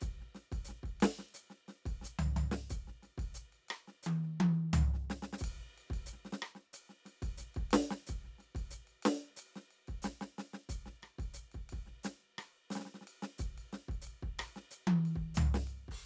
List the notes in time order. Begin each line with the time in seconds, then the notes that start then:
0.01 kick, hi-hat pedal, ride
0.21 snare
0.35 snare, ride
0.52 kick, ride
0.65 snare, hi-hat pedal
0.83 kick, ride
1.00 snare, ride
1.19 snare
1.34 hi-hat pedal, ride
1.50 snare
1.68 snare, ride
1.86 kick, ride
2.01 snare, hi-hat pedal
2.19 floor tom
2.36 floor tom
2.52 snare
2.70 kick, hi-hat pedal, ride
2.87 snare
3.03 snare, ride
3.18 kick, ride
3.34 hi-hat pedal
3.53 ride
3.69 cross-stick, ride
3.88 snare
4.03 hi-hat pedal, high tom
4.23 snare
4.40 high tom
4.54 snare
4.73 floor tom, hi-hat pedal
4.94 snare
5.04 kick
5.10 snare
5.22 snare
5.33 snare
5.38 kick, hi-hat pedal
5.44 ride
5.78 ride
5.90 kick, ride
6.06 hi-hat pedal
6.13 snare
6.25 snare
6.33 snare
6.42 cross-stick
6.55 snare
6.73 hi-hat pedal, ride
6.89 snare
7.05 snare, ride
7.22 kick, ride
7.38 snare, hi-hat pedal
7.54 kick, ride
7.71 snare, ride
7.91 snare
8.07 kick, hi-hat pedal, ride
8.24 snare
8.38 snare, ride
8.55 kick, ride
8.70 snare, hi-hat pedal
8.87 ride
9.03 snare, ride
9.23 snare
9.37 hi-hat pedal, ride
9.56 snare
9.71 ride
9.88 kick, ride
10.02 snare, hi-hat pedal, ride
10.21 snare
10.38 snare, ride
10.53 snare
10.69 kick, hi-hat pedal, ride
10.86 snare
11.03 cross-stick, ride
11.19 kick, ride
11.34 hi-hat pedal
11.52 kick, ride
11.69 kick, ride
11.86 snare
12.03 snare, hi-hat pedal, ride
12.38 cross-stick, ride
12.70 snare, hi-hat pedal, ride
12.75 snare
12.80 snare
12.85 snare
12.94 snare
13.01 snare
13.07 ride
13.22 snare
13.38 kick, hi-hat pedal, ride
13.58 ride
13.73 snare
13.88 kick, ride
14.02 hi-hat pedal
14.07 ride
14.23 kick
14.39 cross-stick, ride
14.56 snare
14.71 hi-hat pedal, ride
14.87 high tom
15.05 ride
15.16 kick
15.34 floor tom, hi-hat pedal
15.54 snare
15.67 ride
15.88 kick, crash